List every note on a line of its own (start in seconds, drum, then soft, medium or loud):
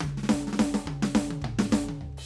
0.01 kick medium
0.01 hi-hat pedal soft
0.01 high tom loud
0.07 snare soft
0.18 snare medium
0.23 snare medium
0.29 kick soft
0.29 snare loud
0.40 snare soft
0.47 snare medium
0.53 snare medium
0.59 kick soft
0.59 snare loud
0.74 snare medium
0.86 kick soft
0.86 high tom loud
1.03 snare loud
1.15 kick soft
1.15 snare loud
1.31 high tom loud
1.42 kick medium
1.42 mid tom loud
1.59 snare loud
1.72 kick medium
1.72 snare loud
1.80 hi-hat pedal soft
1.89 high tom loud
2.01 floor tom medium
2.13 kick soft
2.18 crash medium